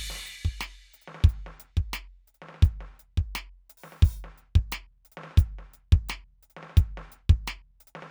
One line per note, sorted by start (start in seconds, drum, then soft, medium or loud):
0.10 snare soft
0.15 snare soft
0.27 closed hi-hat medium
0.45 kick medium
0.45 snare soft
0.61 closed hi-hat medium
0.61 snare loud
0.94 closed hi-hat medium
1.02 closed hi-hat soft
1.08 snare soft
1.14 snare soft
1.20 kick loud
1.20 snare soft
1.29 closed hi-hat medium
1.46 snare soft
1.60 closed hi-hat medium
1.77 kick medium
1.93 closed hi-hat loud
1.93 snare loud
2.27 closed hi-hat soft
2.34 closed hi-hat soft
2.42 snare soft
2.49 snare soft
2.54 snare soft
2.62 closed hi-hat medium
2.62 kick loud
2.81 snare soft
2.99 closed hi-hat medium
3.17 kick medium
3.35 closed hi-hat loud
3.35 snare loud
3.70 closed hi-hat medium
3.77 open hi-hat soft
3.84 snare soft
3.92 snare soft
4.02 open hi-hat medium
4.02 kick loud
4.12 hi-hat pedal soft
4.24 snare soft
4.38 closed hi-hat soft
4.55 kick loud
4.72 closed hi-hat loud
4.72 snare loud
5.05 closed hi-hat medium
5.12 closed hi-hat soft
5.17 snare medium
5.23 snare soft
5.31 snare soft
5.37 closed hi-hat loud
5.37 kick loud
5.59 snare soft
5.73 closed hi-hat medium
5.92 kick loud
6.09 closed hi-hat loud
6.09 snare loud
6.43 closed hi-hat soft
6.50 closed hi-hat soft
6.57 snare soft
6.63 snare soft
6.70 snare soft
6.77 closed hi-hat loud
6.77 kick loud
6.97 snare soft
7.12 closed hi-hat medium
7.29 kick loud
7.29 snare soft
7.47 closed hi-hat medium
7.47 snare loud
7.80 closed hi-hat medium
7.87 closed hi-hat medium
7.95 snare soft
8.02 snare soft